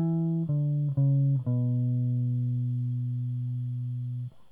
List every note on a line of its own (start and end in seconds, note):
0.00 0.49 E3
0.51 0.95 D3
0.99 1.40 C#3
1.48 4.30 B2